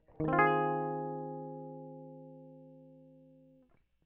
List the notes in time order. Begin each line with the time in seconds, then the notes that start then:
0.21 D#3
0.28 C4
0.33 F4
0.39 G#4